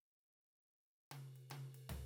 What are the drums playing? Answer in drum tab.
RD |--------x-xx-xx-|
T1 |--------o--o----|
FT |--------------o-|